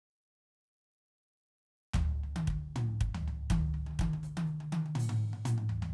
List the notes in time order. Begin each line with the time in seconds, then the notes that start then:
1.94 kick, floor tom
1.95 floor tom
2.23 floor tom
2.36 high tom
2.47 kick, floor tom
2.76 mid tom
3.01 kick, floor tom
3.14 floor tom
3.28 floor tom
3.50 kick, floor tom, high tom
3.74 floor tom
3.86 high tom
3.91 high tom
3.95 kick, high tom
4.13 high tom
4.23 hi-hat pedal, high tom
4.37 high tom
4.46 hi-hat pedal
4.60 high tom
4.72 high tom
4.86 high tom
4.95 hi-hat pedal, mid tom
5.09 mid tom
5.33 mid tom
5.45 hi-hat pedal, mid tom
5.58 mid tom
5.69 floor tom
5.82 floor tom